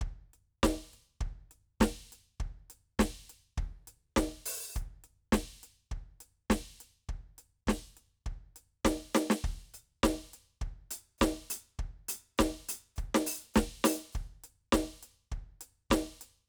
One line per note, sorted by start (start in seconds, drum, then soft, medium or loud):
0.04 kick medium
0.33 closed hi-hat soft
0.63 kick medium
0.63 snare loud
0.93 closed hi-hat soft
1.21 kick medium
1.21 closed hi-hat soft
1.51 closed hi-hat soft
1.80 kick medium
1.80 snare loud
2.12 closed hi-hat medium
2.40 kick medium
2.40 closed hi-hat soft
2.70 closed hi-hat medium
2.99 kick medium
2.99 snare loud
2.99 closed hi-hat soft
3.30 closed hi-hat medium
3.57 kick medium
3.57 closed hi-hat soft
3.57 crash soft
3.57 ride soft
3.87 closed hi-hat medium
4.16 kick medium
4.16 snare loud
4.46 open hi-hat loud
4.75 kick medium
4.75 closed hi-hat soft
4.75 hi-hat pedal medium
5.04 closed hi-hat soft
5.32 kick medium
5.32 snare loud
5.63 closed hi-hat medium
5.91 kick medium
6.20 closed hi-hat medium
6.50 kick medium
6.50 snare loud
6.80 closed hi-hat medium
7.09 kick medium
7.38 closed hi-hat medium
7.67 kick medium
7.67 snare loud
7.67 closed hi-hat soft
7.97 closed hi-hat soft
8.26 kick medium
8.56 closed hi-hat medium
8.85 kick medium
8.85 snare loud
9.14 closed hi-hat medium
9.14 snare loud
9.30 snare loud
9.44 kick medium
9.74 closed hi-hat medium
10.03 kick medium
10.03 snare loud
10.03 closed hi-hat soft
10.33 closed hi-hat medium
10.61 kick medium
10.61 closed hi-hat soft
10.91 closed hi-hat loud
11.18 kick medium
11.18 snare loud
11.18 hi-hat pedal soft
11.50 closed hi-hat loud
11.79 kick medium
11.79 closed hi-hat soft
12.08 closed hi-hat loud
12.38 kick medium
12.38 snare loud
12.38 hi-hat pedal medium
12.69 closed hi-hat loud
12.96 kick medium
12.96 hi-hat pedal medium
13.14 snare loud
13.26 open hi-hat loud
13.54 kick medium
13.54 snare loud
13.54 hi-hat pedal medium
13.84 open hi-hat loud
13.84 snare loud
14.12 kick medium
14.12 hi-hat pedal soft
14.44 closed hi-hat medium
14.72 kick medium
14.72 snare loud
15.03 closed hi-hat medium
15.32 kick medium
15.32 closed hi-hat soft
15.61 closed hi-hat medium
15.90 kick medium
15.90 snare loud
16.21 closed hi-hat medium